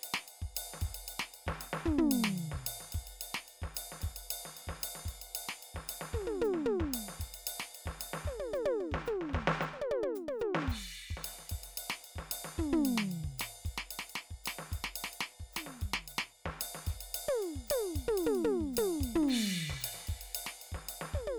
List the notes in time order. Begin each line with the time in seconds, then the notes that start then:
0.03 hi-hat pedal, ride bell
0.14 snare
0.28 ride
0.42 kick
0.48 kick
0.55 hi-hat pedal, ride bell
0.73 snare
0.81 kick, ride
0.88 kick
0.94 ride
1.08 hi-hat pedal, ride
1.19 snare
1.34 ride
1.46 kick, snare
1.60 hi-hat pedal, ride bell
1.73 snare
1.85 kick, floor tom
1.93 kick
1.98 floor tom
2.11 hi-hat pedal, ride bell
2.24 snare
2.37 ride
2.51 kick, snare
2.66 hi-hat pedal, ride bell
2.80 snare
2.92 kick, ride
3.00 kick, snare
3.07 ride
3.21 hi-hat pedal, ride bell
3.34 snare
3.48 ride
3.62 kick, snare
3.74 hi-hat pedal, ride
3.92 snare
4.01 kick, snare, ride
4.06 kick, snare
4.16 ride
4.30 hi-hat pedal, ride bell
4.45 snare
4.56 ride
4.67 kick, snare
4.75 snare
4.81 hi-hat pedal, ride bell
4.95 snare
5.01 snare
5.05 kick, snare, ride
5.08 snare
5.21 ride
5.35 hi-hat pedal, ride bell
5.49 snare
5.62 ride
5.74 kick, snare
5.87 hi-hat pedal, ride
6.01 snare
6.13 kick, snare, mid tom
6.21 snare
6.26 snare, mid tom
6.28 snare
6.31 snare
6.41 hi-hat pedal, mid tom
6.54 snare
6.65 mid tom
6.80 kick, snare
6.93 hi-hat pedal, ride
7.08 snare
7.14 snare
7.19 kick, ride
7.31 snare, ride
7.47 hi-hat pedal, ride bell
7.59 snare
7.74 ride
7.85 kick, snare
7.99 hi-hat pedal, ride
8.13 snare
8.25 kick, high tom
8.39 high tom
8.53 hi-hat pedal, high tom
8.65 high tom
8.80 high tom
8.91 kick, snare
9.06 hi-hat pedal, mid tom
9.21 snare
9.29 snare
9.33 kick, snare
9.40 kick
9.47 snare
9.61 snare, hi-hat pedal
9.73 high tom
9.81 high tom
9.91 high tom
10.03 high tom
10.15 hi-hat pedal
10.28 open hi-hat, high tom
10.39 hi-hat pedal, mid tom
10.54 snare
10.62 snare
10.68 kick, hi-hat pedal, crash
10.80 kick
11.10 kick
11.17 snare
11.23 hi-hat pedal, ride bell
11.38 snare
11.49 kick, ride
11.62 snare, ride
11.66 snare
11.77 hi-hat pedal, ride bell
11.90 snare
12.04 ride
12.15 kick, snare
12.31 hi-hat pedal, ride bell
12.44 snare
12.58 kick, floor tom
12.64 kick
12.72 floor tom
12.85 hi-hat pedal, ride bell
12.97 snare
13.11 ride
13.24 kick
13.38 snare, hi-hat pedal, ride bell
13.65 kick, ride
13.77 snare
13.90 hi-hat pedal, ride bell
13.99 snare
14.09 ride bell
14.15 snare
14.30 kick
14.44 snare, hi-hat pedal, ride
14.58 snare
14.72 kick, ride
14.78 kick
14.84 snare
14.95 ride bell
15.00 hi-hat pedal
15.04 snare
15.13 ride
15.20 snare
15.40 kick
15.52 snare, hi-hat pedal, ride, floor tom
15.66 snare
15.81 kick, ride
15.93 snare
16.07 hi-hat pedal, ride bell
16.18 snare
16.45 kick, snare
16.60 hi-hat pedal, ride bell
16.75 snare
16.86 kick, snare, ride
16.93 kick
17.00 ride
17.14 hi-hat pedal, ride bell
17.28 high tom
17.42 ride
17.55 kick
17.67 hi-hat pedal, high tom, ride bell
17.95 kick, ride
18.07 mid tom
18.17 ride
18.22 hi-hat pedal, mid tom
18.35 ride
18.44 mid tom
18.60 kick
18.73 hi-hat pedal, ride bell
18.77 mid tom
19.00 kick, ride
19.07 kick
19.15 floor tom
19.22 floor tom
19.28 hi-hat pedal, crash
19.69 kick, snare
19.80 hi-hat pedal, ride bell
19.94 snare
20.00 snare
20.07 kick, ride
20.14 kick
20.21 ride
20.34 hi-hat pedal, ride bell
20.46 snare
20.61 ride
20.72 kick, snare
20.88 hi-hat pedal, ride
21.01 snare
21.14 kick, high tom
21.20 kick
21.27 high tom